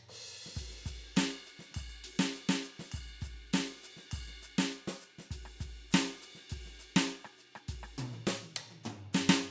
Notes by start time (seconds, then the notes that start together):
0.09 snare, crash
0.46 snare
0.55 kick, hi-hat pedal, ride
0.65 kick
0.70 snare
0.75 snare
0.78 snare
0.81 snare
0.84 kick, snare, hi-hat pedal, ride
0.94 kick
1.17 snare, hi-hat pedal, ride bell
1.26 snare
1.46 hi-hat pedal, ride
1.59 snare
1.72 snare, ride bell
1.76 kick, hi-hat pedal
1.80 snare
1.85 kick
1.90 ride bell
2.04 hi-hat pedal, ride
2.19 snare
2.35 hi-hat pedal, ride
2.49 snare
2.64 hi-hat pedal, ride
2.79 snare
2.92 kick, hi-hat pedal, ride bell
3.02 kick
3.08 snare
3.21 kick, hi-hat pedal, ride
3.30 kick
3.53 snare, hi-hat pedal, ride
3.60 snare
3.83 hi-hat pedal, ride
3.97 snare
4.11 kick, hi-hat pedal, ride bell
4.19 kick
4.22 kick
4.28 snare
4.42 hi-hat pedal, ride
4.58 snare
4.70 hi-hat pedal
4.74 ride
4.87 snare
5.00 hi-hat pedal, ride
5.18 snare
5.31 kick, hi-hat pedal, ride
5.45 cross-stick
5.60 kick, hi-hat pedal, ride
5.69 kick
5.91 snare, hi-hat pedal, ride
6.02 snare
6.21 hi-hat pedal, ride
6.35 snare
6.50 kick, hi-hat pedal, ride
6.66 snare
6.79 hi-hat pedal, ride
6.96 snare
7.07 hi-hat pedal
7.11 ride
7.25 cross-stick
7.38 hi-hat pedal, ride
7.55 cross-stick
7.68 kick, hi-hat pedal, ride
7.74 kick
7.77 kick
7.83 cross-stick
7.98 hi-hat pedal, mid tom
8.13 high tom
8.26 snare, hi-hat pedal
8.42 high tom
8.56 hi-hat pedal, mid tom
8.71 high tom
8.84 floor tom, hi-hat pedal
9.13 snare, hi-hat pedal
9.29 snare
9.42 hi-hat pedal